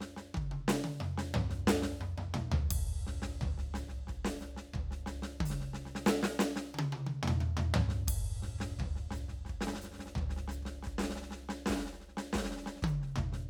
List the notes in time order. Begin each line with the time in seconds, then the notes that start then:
0.01 snare
0.17 snare
0.35 kick, high tom
0.46 kick
0.51 high tom
0.68 snare
0.73 snare
0.84 high tom
1.00 mid tom
1.18 snare
1.34 floor tom
1.50 snare
1.67 snare
1.82 snare
2.01 mid tom
2.18 mid tom
2.34 mid tom
2.52 floor tom
2.71 kick, ride
2.75 hi-hat pedal
3.07 snare
3.22 kick, snare
3.41 kick, floor tom
3.58 snare
3.74 snare, hi-hat pedal
3.89 kick, snare
4.07 kick, snare
4.25 snare
4.39 snare, hi-hat pedal
4.55 kick, snare
4.74 kick, floor tom
4.91 snare
5.06 snare, hi-hat pedal
5.22 snare
5.40 kick, high tom
5.46 kick, hi-hat pedal
5.50 snare
5.61 snare
5.74 snare
5.86 snare
5.95 snare
6.06 snare
6.23 snare
6.39 snare
6.56 snare
6.74 high tom
6.79 high tom
6.93 high tom
7.07 high tom
7.23 mid tom
7.28 mid tom
7.41 mid tom
7.57 mid tom
7.74 floor tom
7.89 snare
8.08 kick, ride
8.42 snare
8.59 kick, snare
8.79 kick, floor tom
8.96 snare
9.11 snare
9.15 hi-hat pedal
9.29 kick, snare
9.45 snare
9.49 kick
9.61 snare
9.67 snare
9.74 snare
9.76 snare
9.82 snare, hi-hat pedal
9.91 snare
9.93 snare
9.98 kick, snare
10.06 snare
10.15 kick, floor tom
10.30 snare
10.37 snare
10.48 snare, hi-hat pedal
10.62 kick, snare
10.83 kick, snare
10.92 kick
10.98 snare
11.03 snare
11.08 snare
11.10 snare
11.16 snare
11.22 snare
11.29 snare
11.31 snare
11.36 snare
11.42 snare
11.49 snare
11.66 kick, snare
11.71 snare
11.76 snare
11.79 snare
11.82 snare
11.86 snare
11.93 snare
12.00 snare
12.08 snare
12.14 snare
12.17 snare
12.33 kick, snare
12.37 snare
12.43 snare
12.45 snare
12.51 snare
12.57 snare
12.63 snare
12.66 snare
12.76 snare
12.82 kick, snare, high tom
12.87 hi-hat pedal
13.02 snare
13.06 snare
13.16 kick, mid tom
13.27 kick
13.33 snare